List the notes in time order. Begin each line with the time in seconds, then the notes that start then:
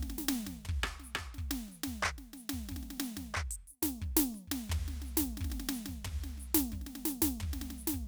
0.03 snare
0.10 snare
0.18 snare
0.25 snare
0.28 snare
0.34 hi-hat pedal
0.46 kick, snare
0.65 kick, floor tom
0.83 cross-stick
1.00 snare
1.04 hi-hat pedal
1.15 kick, cross-stick
1.34 snare
1.38 kick
1.51 snare
1.68 snare, hi-hat pedal
1.83 kick, snare
2.02 kick, percussion
2.18 snare
2.33 snare, hi-hat pedal
2.49 snare
2.53 kick
2.69 kick, snare
2.76 snare
2.83 snare
2.90 snare
2.97 snare
3.00 snare, hi-hat pedal
3.17 kick, snare
3.34 kick, percussion
3.51 closed hi-hat
3.67 hi-hat pedal
3.71 snare
3.82 kick, snare
4.02 kick, snare
4.17 snare
4.34 snare, hi-hat pedal
4.47 kick
4.51 snare
4.69 kick, floor tom
4.88 snare
5.02 snare, hi-hat pedal
5.17 kick, snare
5.37 kick, snare
5.44 snare
5.50 snare
5.52 snare
5.60 snare
5.69 snare
5.73 hi-hat pedal
5.86 kick, snare
6.04 kick, floor tom
6.24 snare
6.37 snare, hi-hat pedal
6.54 kick, snare
6.72 kick, snare
6.81 snare
6.86 snare
6.95 snare
7.05 snare, hi-hat pedal
7.22 kick, snare
7.40 kick, floor tom
7.53 snare
7.61 snare
7.70 snare
7.78 hi-hat pedal
7.87 snare
7.94 kick